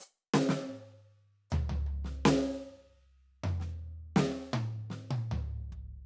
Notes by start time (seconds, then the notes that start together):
0.00 hi-hat pedal
0.34 snare
0.49 snare
0.69 high tom
1.50 floor tom, hi-hat pedal
1.69 floor tom
1.86 floor tom
2.04 snare
2.25 snare
3.44 mid tom
3.60 snare
4.16 snare
4.50 hi-hat pedal, high tom
4.90 snare
5.11 high tom
5.31 floor tom
5.72 kick